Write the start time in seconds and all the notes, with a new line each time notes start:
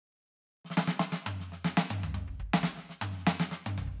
0.64 snare
0.70 snare
0.77 snare
0.87 snare
0.99 snare
1.12 snare
1.26 high tom
1.40 snare
1.52 snare
1.64 snare
1.77 snare
1.90 high tom
2.03 mid tom
2.14 high tom
2.28 kick
2.40 kick
2.53 snare
2.63 snare
2.77 snare
2.89 snare
3.01 high tom
3.12 snare
3.17 snare
3.21 snare
3.27 snare
3.40 snare
3.51 snare
3.66 high tom
3.78 floor tom
3.87 kick